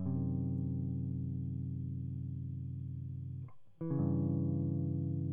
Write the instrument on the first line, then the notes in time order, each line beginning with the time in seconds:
electric guitar
0.00 F#2
0.07 C3
3.82 E3
3.92 C#3
4.01 G2